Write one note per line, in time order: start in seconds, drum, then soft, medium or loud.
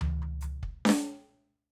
0.01 closed hi-hat soft
0.01 floor tom loud
0.01 high tom loud
0.22 floor tom medium
0.22 high tom soft
0.41 floor tom medium
0.41 hi-hat pedal medium
0.41 high tom soft
0.63 kick medium
0.85 snare loud
0.89 snare loud